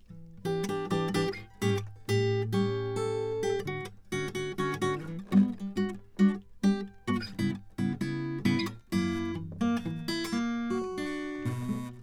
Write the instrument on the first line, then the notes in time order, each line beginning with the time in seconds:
acoustic guitar
0.11 E3
0.46 E3 B3 C#4 G4
0.70 E3 B3 D4 G4
0.91 E3 B3 D4 G4
1.15 E3 B3 D4 G4
1.62 A2 G3 C#4 G4
2.08 A2 G3 C#4 G4
2.53 G3 C#4 G4
2.97 A4
3.44 G4
3.66 D3 C#4 F#4
4.12 D3 A3 C#4 F#4
4.34 D3 A3 C#4 F#4
4.59 D3 A3 C#4 F#4
4.82 D3 A3 C#4 F#4
5.02 E3
5.33 G3 B3 D4 F#4
5.61 G3
5.77 G3 B3 D4 F#4
6.20 B3 D4 F#4
6.30 G3
6.64 B3 C#4 G4
6.74 G3
7.08 G3 A#3 D4 F#4
7.39 C#3 G3 B3 E4
7.79 C#3 G3 B3 E4
8.02 C#3 G3 B3 E4
8.46 C#3 G3 B3 E4
8.93 F#2 E3 A#3 E4
9.36 E3
9.61 A#3
9.86 E3
10.09 E4
10.33 A#3
10.71 F#4
10.98 D4
11.46 B2
11.69 A3